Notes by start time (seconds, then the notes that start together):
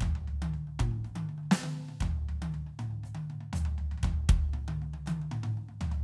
0.01 kick, floor tom
0.15 floor tom
0.27 floor tom
0.42 high tom
0.53 floor tom
0.67 high tom
0.79 kick, mid tom
0.91 high tom
1.04 hi-hat pedal, mid tom
1.15 high tom
1.29 mid tom
1.38 high tom
1.43 high tom
1.51 snare, hi-hat pedal
1.63 high tom
1.76 mid tom
1.88 mid tom
2.00 kick, floor tom
2.29 floor tom
2.42 high tom
2.51 floor tom, hi-hat pedal
2.66 high tom
2.79 hi-hat pedal, mid tom
2.91 high tom
3.03 hi-hat pedal, mid tom
3.15 high tom
3.30 mid tom
3.41 mid tom
3.53 floor tom, hi-hat pedal
3.65 floor tom
3.71 floor tom
3.78 floor tom
3.91 floor tom
3.98 floor tom
4.03 kick, floor tom
4.29 kick, floor tom
4.53 mid tom
4.68 high tom
4.82 mid tom
4.93 high tom
5.06 hi-hat pedal, high tom
5.21 high tom
5.31 mid tom
5.43 mid tom
5.57 mid tom
5.68 mid tom
5.81 floor tom
5.91 floor tom